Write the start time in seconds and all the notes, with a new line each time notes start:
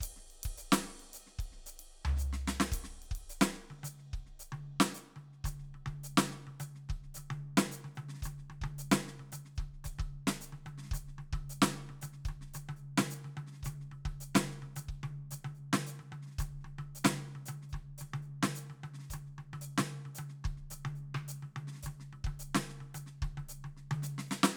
0.01 kick, hi-hat pedal, ride
0.16 snare
0.30 ride
0.43 kick, ride
0.58 hi-hat pedal
0.72 snare, ride
0.85 snare
1.00 ride
1.14 hi-hat pedal, ride
1.27 snare
1.39 kick, ride
1.52 snare
1.56 snare
1.66 hi-hat pedal, ride
1.79 ride
2.05 floor tom
2.16 snare, hi-hat pedal
2.33 snare
2.48 snare
2.60 snare
2.72 kick, hi-hat pedal, ride
2.84 snare
3.02 snare, ride
3.11 kick
3.15 ride
3.30 hi-hat pedal
3.41 snare
3.54 snare
3.56 snare
3.70 high tom
3.83 hi-hat pedal, high tom
3.99 snare
4.13 kick
4.26 snare
4.40 hi-hat pedal
4.52 high tom
4.80 snare
4.94 hi-hat pedal
5.16 high tom
5.33 snare
5.44 kick, hi-hat pedal, high tom
5.59 snare
5.62 snare
5.74 high tom
5.86 kick, high tom
6.04 hi-hat pedal
6.17 snare, high tom
6.31 snare
6.47 high tom
6.60 hi-hat pedal, high tom
6.75 snare
6.89 kick, high tom
7.03 snare
7.15 hi-hat pedal, high tom
7.30 high tom
7.57 snare, high tom
7.72 hi-hat pedal
7.84 high tom
7.95 hi-hat pedal, high tom
8.09 snare
8.14 snare
8.18 snare
8.21 kick, snare, hi-hat pedal
8.26 high tom
8.38 snare
8.50 high tom
8.62 kick, high tom
8.78 hi-hat pedal
8.92 snare, high tom
9.07 snare
9.20 high tom
9.32 hi-hat pedal, high tom
9.45 snare
9.56 kick, hi-hat pedal
9.60 high tom
9.73 snare
9.84 kick, hi-hat pedal, high tom
9.99 kick, high tom
10.27 snare, high tom
10.41 hi-hat pedal
10.53 high tom
10.66 hi-hat pedal, high tom
10.78 snare
10.82 snare
10.85 snare
10.87 snare
10.91 kick, hi-hat pedal, high tom
11.08 snare
11.18 high tom
11.33 kick, high tom
11.50 hi-hat pedal
11.62 snare, high tom
11.79 snare
11.89 high tom
12.02 hi-hat pedal, high tom
12.13 snare
12.25 kick, hi-hat pedal, high tom
12.41 snare
12.46 snare
12.54 hi-hat pedal, high tom
12.69 high tom
12.76 hi-hat pedal
12.98 snare, high tom
13.10 hi-hat pedal
13.25 high tom
13.37 high tom
13.47 snare
13.51 snare
13.54 snare
13.63 kick, hi-hat pedal, high tom
13.81 snare
13.92 high tom
14.05 kick, high tom
14.21 hi-hat pedal
14.35 snare, high tom
14.51 snare
14.56 snare
14.62 high tom
14.76 hi-hat pedal, high tom
14.89 kick
15.03 high tom
15.31 hi-hat pedal, high tom
15.45 high tom
15.55 hi-hat pedal
15.73 snare, high tom
15.87 hi-hat pedal
15.99 high tom
16.12 high tom
16.22 snare
16.26 snare
16.31 snare
16.39 kick, hi-hat pedal, high tom
16.60 snare
16.62 snare, high tom
16.79 high tom
16.95 hi-hat pedal
17.05 snare, high tom
17.35 high tom
17.46 hi-hat pedal, high tom
17.62 snare
17.69 kick, hi-hat pedal
17.74 high tom
17.98 hi-hat pedal, high tom
18.14 high tom
18.22 hi-hat pedal
18.43 snare, high tom
18.55 hi-hat pedal
18.70 high tom
18.84 high tom
18.94 snare
18.99 snare
19.02 snare
19.07 kick, snare, hi-hat pedal
19.14 high tom
19.26 snare
19.38 high tom
19.53 high tom
19.61 hi-hat pedal
19.78 snare, high tom
20.05 high tom
20.15 hi-hat pedal, high tom
20.29 snare
20.44 kick, high tom
20.57 snare
20.71 hi-hat pedal, high tom
20.85 high tom
20.95 hi-hat pedal
21.15 cross-stick, high tom
21.28 hi-hat pedal
21.43 high tom
21.56 high tom
21.67 snare
21.72 snare
21.75 snare
21.77 snare
21.83 kick, hi-hat pedal, high tom
22.00 snare
22.13 high tom
22.24 kick, high tom
22.39 hi-hat pedal
22.55 snare, high tom
22.69 snare
22.81 high tom
22.95 hi-hat pedal, high tom
23.06 snare
23.22 kick, high tom
23.37 high tom
23.49 snare, hi-hat pedal
23.64 high tom
23.77 snare
23.91 high tom
24.02 snare, hi-hat pedal
24.18 snare
24.27 snare, hi-hat pedal
24.43 snare